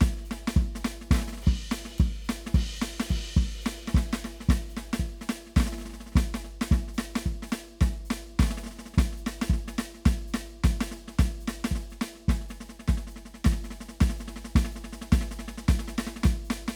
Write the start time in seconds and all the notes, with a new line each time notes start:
0.01 kick, snare
0.18 snare
0.25 hi-hat pedal
0.31 snare
0.48 snare
0.57 kick
0.61 snare
0.76 snare, hi-hat pedal
0.85 snare
1.01 snare
1.11 kick, snare
1.18 snare
1.28 snare, hi-hat pedal
1.33 snare
1.38 snare
1.42 crash
1.47 kick
1.72 snare, hi-hat pedal
1.85 snare
1.97 kick, snare, crash
2.25 hi-hat pedal
2.29 snare
2.47 snare
2.55 kick, crash
2.76 hi-hat pedal
2.82 snare
3.00 snare
3.09 kick, crash
3.37 kick, ride
3.62 hi-hat pedal
3.66 snare
3.88 snare
3.95 kick, snare
4.13 snare, hi-hat pedal
4.25 snare
4.41 snare
4.49 kick, snare
4.70 hi-hat pedal
4.77 snare
4.93 snare
5.00 kick
5.21 snare, hi-hat pedal
5.29 snare
5.47 snare
5.57 kick, snare
5.60 snare
5.64 snare
5.66 snare
5.73 snare
5.78 snare, hi-hat pedal
5.81 snare
5.86 snare
5.90 snare
5.94 snare
6.00 snare
6.07 snare
6.12 kick, snare
6.17 snare
6.34 snare, hi-hat pedal
6.45 snare
6.61 snare
6.72 kick, snare
6.88 snare
6.94 hi-hat pedal
6.98 snare
7.16 snare
7.26 kick
7.43 snare
7.47 hi-hat pedal
7.52 snare
7.81 kick, snare
8.05 hi-hat pedal
8.11 snare
8.39 kick, snare
8.43 snare
8.47 snare
8.51 snare
8.58 snare, hi-hat pedal
8.64 snare
8.66 snare
8.71 snare
8.76 snare
8.79 snare
8.86 snare
8.94 snare
8.98 kick, snare
9.13 snare
9.17 hi-hat pedal
9.27 snare
9.42 snare
9.50 kick, snare
9.68 snare, hi-hat pedal
9.78 snare
9.95 snare
10.06 kick, snare
10.23 snare
10.28 hi-hat pedal
10.34 snare
10.64 kick, snare
10.81 snare, hi-hat pedal
10.91 snare
11.08 snare
11.19 kick, snare
11.41 hi-hat pedal
11.48 snare
11.65 snare
11.72 kick, snare
11.90 snare, hi-hat pedal
12.01 snare
12.15 snare
12.29 kick, snare
12.41 snare
12.49 snare, hi-hat pedal
12.61 snare
12.69 snare
12.80 snare
12.88 kick, snare
12.97 snare
13.07 snare, hi-hat pedal
13.16 snare
13.26 snare
13.34 snare
13.45 kick, snare
13.52 snare
13.64 snare, hi-hat pedal
13.71 snare
13.89 snare
14.01 kick, snare
14.10 snare
14.18 snare, hi-hat pedal
14.28 snare
14.36 snare
14.45 snare
14.56 kick, snare
14.65 snare
14.72 hi-hat pedal
14.76 snare
14.84 snare
14.93 snare
15.02 snare
15.12 kick, snare
15.21 snare
15.31 hi-hat pedal
15.39 snare
15.48 snare
15.58 snare
15.68 kick, snare
15.79 snare
15.88 snare, hi-hat pedal
15.98 snare
16.07 snare
16.16 snare
16.24 kick, snare
16.45 hi-hat pedal
16.50 snare
16.68 snare